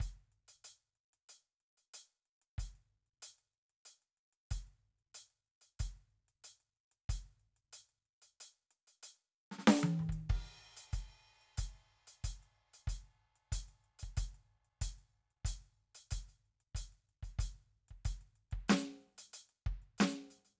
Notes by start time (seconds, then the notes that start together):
0.00 closed hi-hat, kick
0.32 closed hi-hat
0.48 closed hi-hat
0.64 closed hi-hat
0.81 closed hi-hat
0.95 closed hi-hat
1.13 closed hi-hat
1.29 closed hi-hat
1.60 closed hi-hat
1.77 closed hi-hat
1.94 closed hi-hat
2.09 closed hi-hat
2.25 closed hi-hat
2.42 closed hi-hat
2.58 closed hi-hat, kick
2.75 closed hi-hat
3.06 closed hi-hat
3.22 closed hi-hat
3.38 closed hi-hat
3.53 closed hi-hat
3.69 closed hi-hat
3.85 closed hi-hat
4.02 closed hi-hat
4.17 closed hi-hat
4.33 closed hi-hat
4.51 closed hi-hat, kick
4.67 closed hi-hat
4.99 closed hi-hat
5.14 closed hi-hat
5.30 closed hi-hat
5.46 closed hi-hat
5.61 closed hi-hat
5.79 closed hi-hat, kick
5.96 closed hi-hat
6.10 closed hi-hat
6.28 closed hi-hat
6.44 closed hi-hat
6.60 closed hi-hat
6.76 closed hi-hat
6.91 closed hi-hat
7.09 closed hi-hat, kick
7.27 closed hi-hat
7.40 closed hi-hat
7.56 closed hi-hat
7.73 closed hi-hat
7.89 closed hi-hat
8.05 closed hi-hat
8.22 closed hi-hat
8.40 closed hi-hat
8.71 closed hi-hat
8.87 closed hi-hat
9.03 closed hi-hat
9.16 closed hi-hat
9.51 snare
9.58 snare, hi-hat pedal
9.67 snare
9.83 high tom
9.99 mid tom
10.09 kick, closed hi-hat
10.29 kick, crash
10.45 closed hi-hat
10.56 closed hi-hat
10.76 closed hi-hat
10.93 closed hi-hat, kick
11.09 closed hi-hat
11.27 closed hi-hat
11.41 closed hi-hat
11.57 closed hi-hat, kick
11.74 closed hi-hat
12.07 closed hi-hat
12.24 closed hi-hat, kick
12.43 closed hi-hat
12.57 closed hi-hat
12.73 closed hi-hat
12.87 closed hi-hat, kick
13.05 closed hi-hat
13.35 closed hi-hat
13.52 closed hi-hat, kick
13.68 closed hi-hat
13.84 closed hi-hat
13.99 closed hi-hat, kick
14.17 closed hi-hat, kick
14.34 closed hi-hat
14.65 closed hi-hat
14.81 closed hi-hat, kick
14.98 closed hi-hat
15.30 closed hi-hat
15.45 closed hi-hat, kick
15.62 closed hi-hat
15.95 closed hi-hat
16.11 closed hi-hat, kick
16.28 closed hi-hat
16.45 closed hi-hat
16.60 closed hi-hat
16.75 closed hi-hat, kick
16.92 closed hi-hat
17.09 closed hi-hat
17.22 closed hi-hat, kick
17.39 closed hi-hat, kick
17.56 closed hi-hat
17.88 kick, closed hi-hat
18.05 closed hi-hat, kick
18.21 closed hi-hat
18.35 closed hi-hat
18.51 kick, closed hi-hat
18.68 closed hi-hat, snare
19.01 closed hi-hat
19.18 closed hi-hat
19.33 closed hi-hat
19.49 closed hi-hat
19.66 kick, closed hi-hat
19.82 closed hi-hat
19.98 closed hi-hat, snare
20.30 closed hi-hat
20.45 closed hi-hat